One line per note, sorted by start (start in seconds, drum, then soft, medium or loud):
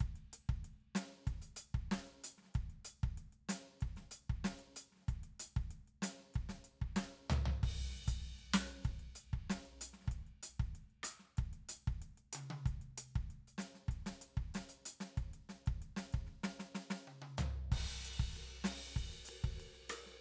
0.01 kick medium
0.01 closed hi-hat soft
0.16 closed hi-hat soft
0.34 closed hi-hat medium
0.50 kick medium
0.65 closed hi-hat soft
0.81 closed hi-hat soft
0.96 snare medium
0.96 closed hi-hat medium
1.12 snare soft
1.18 snare soft
1.27 kick soft
1.27 closed hi-hat soft
1.42 closed hi-hat soft
1.57 closed hi-hat medium
1.75 kick medium
1.92 snare medium
1.92 closed hi-hat soft
2.07 closed hi-hat soft
2.24 closed hi-hat medium
2.38 snare soft
2.43 snare soft
2.46 snare soft
2.55 kick medium
2.55 closed hi-hat soft
2.71 closed hi-hat soft
2.85 closed hi-hat medium
3.04 kick medium
3.18 closed hi-hat soft
3.33 closed hi-hat soft
3.49 closed hi-hat loud
3.49 snare medium
3.69 snare soft
3.81 kick soft
3.81 closed hi-hat soft
3.97 snare soft
3.97 closed hi-hat soft
4.12 closed hi-hat medium
4.30 kick soft
4.45 snare medium
4.45 closed hi-hat soft
4.60 closed hi-hat soft
4.77 closed hi-hat medium
4.93 snare soft
4.96 snare soft
4.98 snare soft
5.02 snare soft
5.09 kick medium
5.09 closed hi-hat soft
5.24 closed hi-hat soft
5.40 closed hi-hat medium
5.57 kick medium
5.71 closed hi-hat soft
5.88 closed hi-hat soft
6.03 closed hi-hat loud
6.03 snare medium
6.19 snare soft
6.35 kick soft
6.35 closed hi-hat soft
6.50 snare soft
6.50 closed hi-hat soft
6.65 closed hi-hat medium
6.82 kick soft
6.97 snare medium
6.97 closed hi-hat medium
7.30 floor tom loud
7.30 hi-hat pedal medium
7.46 floor tom medium
7.64 kick medium
7.64 ride medium
7.91 snare soft
8.08 closed hi-hat medium
8.08 kick medium
8.40 closed hi-hat soft
8.54 open hi-hat medium
8.54 snare loud
8.70 snare soft
8.85 kick medium
8.85 closed hi-hat soft
9.00 closed hi-hat soft
9.16 closed hi-hat medium
9.34 kick soft
9.50 snare medium
9.50 closed hi-hat medium
9.66 closed hi-hat soft
9.82 closed hi-hat loud
9.94 snare soft
9.98 snare soft
10.01 snare soft
10.05 kick soft
10.05 snare soft
10.12 closed hi-hat soft
10.27 closed hi-hat soft
10.44 closed hi-hat medium
10.60 kick medium
10.76 closed hi-hat soft
10.91 closed hi-hat soft
11.04 closed hi-hat loud
11.04 cross-stick medium
11.20 snare soft
11.38 kick medium
11.38 closed hi-hat soft
11.54 closed hi-hat soft
11.69 closed hi-hat loud
11.88 kick medium
12.02 closed hi-hat soft
12.18 closed hi-hat soft
12.34 closed hi-hat loud
12.34 high tom medium
12.51 high tom medium
12.66 kick medium
12.66 closed hi-hat soft
12.82 closed hi-hat soft
12.98 closed hi-hat loud
13.16 kick medium
13.31 closed hi-hat soft
13.48 closed hi-hat soft
13.59 snare medium
13.59 closed hi-hat medium
13.75 snare soft
13.89 kick soft
13.89 closed hi-hat soft
14.07 snare medium
14.07 closed hi-hat soft
14.22 closed hi-hat medium
14.38 kick soft
14.55 snare medium
14.55 closed hi-hat medium
14.70 closed hi-hat soft
14.86 closed hi-hat loud
15.01 snare medium
15.18 kick soft
15.18 closed hi-hat soft
15.34 closed hi-hat soft
15.50 snare soft
15.67 kick medium
15.67 closed hi-hat soft
15.83 closed hi-hat soft
15.97 snare medium
16.13 kick medium
16.13 closed hi-hat soft
16.27 snare soft
16.44 snare medium
16.60 snare soft
16.75 snare medium
16.91 snare medium
17.08 high tom soft
17.22 high tom medium
17.38 floor tom loud
17.38 hi-hat pedal medium
17.72 kick medium
17.72 crash medium
17.72 ride medium
18.05 hi-hat pedal medium
18.05 ride soft
18.20 kick medium
18.37 ride medium
18.65 snare medium
18.65 hi-hat pedal medium
18.65 ride medium
18.97 kick soft
18.97 ride soft
19.12 ride soft
19.25 hi-hat pedal medium
19.29 ride medium
19.44 kick medium
19.61 ride medium
19.76 ride soft
19.90 cross-stick medium
19.90 hi-hat pedal loud
19.90 ride loud
20.07 snare soft